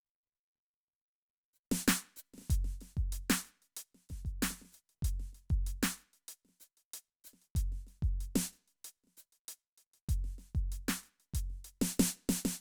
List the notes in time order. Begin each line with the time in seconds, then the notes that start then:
1.53 hi-hat pedal
1.71 snare
1.88 snare
2.16 hi-hat pedal
2.34 snare
2.38 snare
2.41 snare
2.50 closed hi-hat, kick
2.64 snare
2.81 snare, closed hi-hat
2.97 kick, closed hi-hat
3.12 closed hi-hat
3.30 snare
3.45 closed hi-hat
3.62 closed hi-hat
3.77 closed hi-hat
3.94 snare
4.09 kick, snare, closed hi-hat
4.25 kick, closed hi-hat
4.42 open hi-hat, snare
4.50 snare
4.61 snare
4.65 snare
4.72 closed hi-hat, hi-hat pedal
4.89 closed hi-hat
5.02 closed hi-hat, kick
5.19 snare
5.32 snare, closed hi-hat
5.50 kick, closed hi-hat
5.66 closed hi-hat
5.83 snare
5.98 closed hi-hat
6.13 closed hi-hat
6.28 open hi-hat
6.45 snare
6.49 snare
6.60 closed hi-hat, hi-hat pedal
6.77 closed hi-hat
6.93 open hi-hat
7.24 closed hi-hat, hi-hat pedal
7.33 snare
7.42 closed hi-hat
7.55 closed hi-hat, kick
7.72 snare
7.87 snare, closed hi-hat
8.02 kick, closed hi-hat
8.20 closed hi-hat
8.35 snare
8.53 closed hi-hat
8.67 closed hi-hat
8.84 open hi-hat
9.04 snare
9.07 snare
9.17 closed hi-hat, hi-hat pedal
9.32 closed hi-hat
9.48 closed hi-hat
9.77 closed hi-hat
9.93 closed hi-hat
10.09 closed hi-hat, kick
10.24 snare
10.38 snare, closed hi-hat
10.55 kick, closed hi-hat
10.72 closed hi-hat
10.88 snare
11.03 closed hi-hat
11.20 closed hi-hat
11.34 closed hi-hat, kick
11.50 snare
11.64 open hi-hat
11.81 snare
11.93 hi-hat pedal
11.99 snare
12.29 snare, hi-hat pedal
12.45 snare